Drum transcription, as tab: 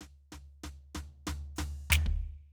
Hi-hat    |----------p-----|
Snare     |g-g-g-o-o-o-o---|
Floor tom |g-g-o-o-o-o-o---|
Kick      |-------------o--|